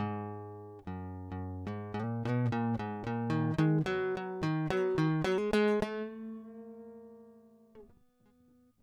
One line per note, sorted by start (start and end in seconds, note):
0.00 0.84 G#2
0.89 1.33 F#2
1.33 1.66 F#2
1.68 1.94 G#2
1.96 2.05 A2
2.06 2.27 A#2
2.27 2.52 B2
2.76 3.04 G#2
3.05 3.57 A#2
3.31 3.58 D#3
3.60 3.86 D#3
3.60 3.82 G#3
3.87 4.17 F#3
4.18 4.44 F#3
4.44 4.76 D#3
4.44 4.69 D#3
4.72 5.12 F#3
4.99 5.29 D#3
5.26 5.39 F#3
5.39 5.55 G#3
5.55 5.84 G#3
5.84 5.96 A3
5.84 7.85 A#3